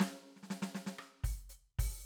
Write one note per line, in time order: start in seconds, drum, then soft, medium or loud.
0.02 snare medium
0.36 snare soft
0.43 snare soft
0.50 snare medium
0.62 snare medium
0.75 snare medium
0.87 snare medium
0.99 cross-stick medium
1.24 open hi-hat medium
1.24 kick medium
1.50 hi-hat pedal medium
1.79 open hi-hat medium
1.79 kick medium